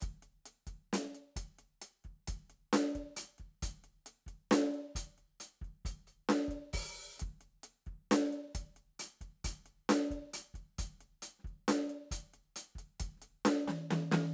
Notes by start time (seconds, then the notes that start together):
0.01 kick, closed hi-hat, hi-hat pedal
0.23 closed hi-hat
0.46 closed hi-hat
0.67 kick, closed hi-hat
0.93 closed hi-hat, snare
1.15 closed hi-hat
1.36 kick, closed hi-hat
1.59 closed hi-hat
1.82 closed hi-hat
2.04 kick, closed hi-hat
2.28 kick, closed hi-hat
2.50 closed hi-hat
2.73 closed hi-hat, snare
2.95 kick, closed hi-hat
3.17 closed hi-hat
3.38 kick, closed hi-hat
3.62 closed hi-hat, kick
3.84 closed hi-hat
4.06 closed hi-hat
4.26 kick, closed hi-hat
4.51 closed hi-hat, snare
4.74 closed hi-hat
4.95 closed hi-hat, kick
5.18 closed hi-hat
5.40 closed hi-hat
5.62 kick, closed hi-hat
5.85 closed hi-hat, kick
6.07 closed hi-hat
6.29 snare, closed hi-hat
6.48 kick, closed hi-hat
6.73 open hi-hat, kick
7.17 closed hi-hat, hi-hat pedal
7.22 kick
7.41 closed hi-hat
7.63 closed hi-hat
7.86 kick, closed hi-hat
8.11 closed hi-hat, snare
8.33 closed hi-hat
8.55 kick, closed hi-hat
8.76 closed hi-hat
8.99 closed hi-hat
9.21 kick, closed hi-hat
9.44 closed hi-hat, kick
9.66 closed hi-hat
9.89 closed hi-hat, snare
10.11 kick, closed hi-hat
10.34 closed hi-hat
10.54 kick, closed hi-hat
10.79 closed hi-hat, kick
11.01 closed hi-hat
11.22 closed hi-hat
11.39 snare
11.44 kick, closed hi-hat
11.68 closed hi-hat, snare
11.90 closed hi-hat
12.11 closed hi-hat, kick
12.34 closed hi-hat
12.56 closed hi-hat
12.75 kick, closed hi-hat
13.00 kick, closed hi-hat
13.17 snare
13.22 closed hi-hat
13.45 snare, closed hi-hat
13.66 kick, snare, high tom
13.91 snare, high tom
14.12 snare, high tom